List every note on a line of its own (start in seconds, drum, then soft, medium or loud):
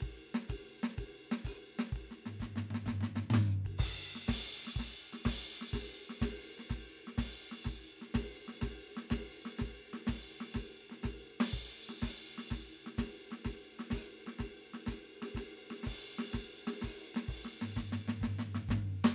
0.01 kick soft
0.01 ride medium
0.35 snare medium
0.49 kick soft
0.49 hi-hat pedal loud
0.49 ride loud
0.83 snare medium
0.98 kick soft
0.98 ride loud
1.32 snare medium
1.45 kick soft
1.45 hi-hat pedal loud
1.45 ride loud
1.79 snare medium
1.93 kick soft
1.93 ride medium
2.11 snare soft
2.26 snare soft
2.26 floor tom medium
2.40 kick soft
2.40 snare soft
2.40 floor tom medium
2.40 hi-hat pedal medium
2.56 snare medium
2.56 floor tom medium
2.61 hi-hat pedal soft
2.71 floor tom medium
2.75 snare medium
2.86 kick soft
2.86 snare medium
2.86 floor tom medium
2.86 hi-hat pedal loud
3.01 snare medium
3.01 floor tom medium
3.16 snare medium
3.16 floor tom medium
3.31 snare loud
3.31 floor tom loud
3.31 hi-hat pedal loud
3.53 hi-hat pedal soft
3.65 kick soft
3.65 ride medium
3.79 kick medium
3.79 crash loud
3.79 ride medium
4.16 snare soft
4.28 kick soft
4.28 snare medium
4.28 ride loud
4.66 snare soft
4.66 ride medium
4.76 kick soft
4.76 snare soft
4.76 ride medium
5.13 snare soft
5.13 ride medium
5.25 kick medium
5.25 snare medium
5.25 ride loud
5.62 snare soft
5.62 ride medium
5.74 kick soft
5.74 snare soft
5.74 ride loud
6.10 snare soft
6.10 ride medium
6.21 kick soft
6.21 snare medium
6.21 hi-hat pedal medium
6.21 ride loud
6.58 snare soft
6.58 ride soft
6.70 kick soft
6.70 snare soft
6.70 ride medium
7.08 snare soft
7.08 ride soft
7.18 kick soft
7.18 snare medium
7.18 hi-hat pedal medium
7.18 ride medium
7.52 snare soft
7.52 ride medium
7.65 kick soft
7.65 snare soft
7.65 ride medium
8.02 snare soft
8.02 ride soft
8.14 kick soft
8.14 snare medium
8.14 hi-hat pedal medium
8.14 ride loud
8.48 snare soft
8.48 ride medium
8.62 kick soft
8.62 snare medium
8.62 ride loud
8.97 snare medium
8.97 ride medium
9.11 kick soft
9.11 snare medium
9.11 hi-hat pedal loud
9.11 ride loud
9.46 snare soft
9.46 ride medium
9.59 kick soft
9.59 snare medium
9.59 ride medium
9.94 snare soft
9.94 ride medium
10.07 kick soft
10.07 snare medium
10.07 hi-hat pedal loud
10.07 ride medium
10.41 snare soft
10.41 ride medium
10.55 kick soft
10.55 snare medium
10.55 ride medium
10.90 snare soft
10.90 ride medium
11.04 kick soft
11.04 snare medium
11.04 hi-hat pedal loud
11.04 ride medium
11.40 snare loud
11.40 ride medium
11.53 kick soft
11.53 hi-hat pedal soft
11.89 snare soft
11.89 ride medium
12.02 kick soft
12.02 snare medium
12.02 hi-hat pedal loud
12.02 ride medium
12.38 snare soft
12.38 ride medium
12.50 kick soft
12.50 snare medium
12.50 hi-hat pedal soft
12.50 ride medium
12.87 snare soft
12.87 ride medium
12.98 kick soft
12.98 snare medium
12.98 hi-hat pedal loud
12.98 ride loud
13.31 snare soft
13.31 ride medium
13.45 kick soft
13.45 snare medium
13.45 ride loud
13.79 snare soft
13.79 ride medium
13.91 kick soft
13.91 snare medium
13.91 hi-hat pedal loud
13.91 ride loud
14.27 snare soft
14.27 ride medium
14.39 kick soft
14.39 snare medium
14.39 ride medium
14.74 snare soft
14.74 ride medium
14.87 kick soft
14.87 snare medium
14.87 hi-hat pedal loud
14.87 ride loud
15.22 snare soft
15.22 ride loud
15.35 kick soft
15.35 snare soft
15.35 ride loud
15.71 snare soft
15.71 ride loud
15.84 kick soft
15.84 snare medium
15.84 hi-hat pedal medium
15.84 ride medium
16.19 snare medium
16.19 ride loud
16.34 kick soft
16.34 snare medium
16.34 ride medium
16.67 snare medium
16.67 ride loud
16.82 kick soft
16.82 snare medium
16.82 hi-hat pedal loud
16.82 ride medium
17.15 snare medium
17.15 ride medium
17.29 kick soft
17.29 ride medium
17.45 snare soft
17.62 snare medium
17.62 floor tom medium
17.76 kick soft
17.76 snare medium
17.76 floor tom medium
17.76 hi-hat pedal loud
17.93 snare medium
17.93 floor tom medium
18.08 snare medium
18.08 floor tom medium
18.22 kick soft
18.22 snare medium
18.22 floor tom medium
18.22 hi-hat pedal soft
18.39 snare medium
18.39 floor tom medium
18.55 snare medium
18.55 floor tom medium
18.69 kick soft
18.69 snare medium
18.69 floor tom loud
19.04 open hi-hat loud
19.04 snare loud